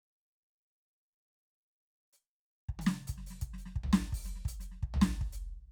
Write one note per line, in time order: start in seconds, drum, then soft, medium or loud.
2.13 hi-hat pedal soft
2.69 kick soft
2.80 hi-hat pedal medium
2.80 high tom loud
2.87 snare loud
3.08 closed hi-hat medium
3.08 kick soft
3.18 snare soft
3.27 hi-hat pedal medium
3.31 snare soft
3.42 kick soft
3.42 closed hi-hat medium
3.54 snare soft
3.59 hi-hat pedal soft
3.66 snare soft
3.76 kick soft
3.84 floor tom loud
3.93 snare loud
4.13 open hi-hat medium
4.13 kick medium
4.25 snare soft
4.25 hi-hat pedal medium
4.36 snare soft
4.46 closed hi-hat medium
4.46 kick soft
4.60 snare soft
4.60 hi-hat pedal medium
4.72 snare soft
4.83 kick soft
4.94 floor tom loud
5.02 snare loud
5.21 kick medium
5.33 hi-hat pedal medium